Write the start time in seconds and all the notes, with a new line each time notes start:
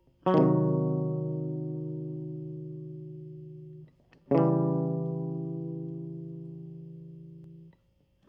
0.27 F#3
0.35 D#3
0.39 C3
4.33 C#3 E3
4.39 G3